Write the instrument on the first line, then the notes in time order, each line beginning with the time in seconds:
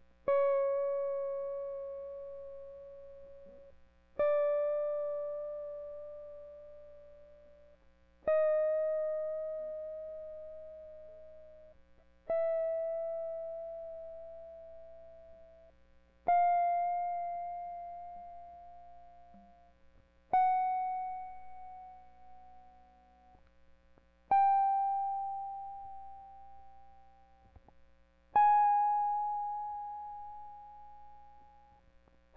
electric guitar
0.28 C#5
4.20 D5
8.28 D#5
12.30 E5
16.28 F5
20.34 F#5
24.32 G5
28.36 G#5